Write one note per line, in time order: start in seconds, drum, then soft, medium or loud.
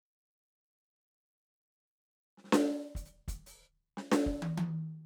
2.37 snare soft
2.44 snare soft
2.47 snare soft
2.52 snare loud
2.95 open hi-hat medium
2.95 kick soft
3.05 hi-hat pedal medium
3.28 open hi-hat medium
3.28 kick soft
3.46 hi-hat pedal medium
3.97 snare medium
4.12 snare loud
4.26 kick medium
4.42 closed hi-hat soft
4.42 high tom loud
4.57 closed hi-hat soft
4.57 high tom loud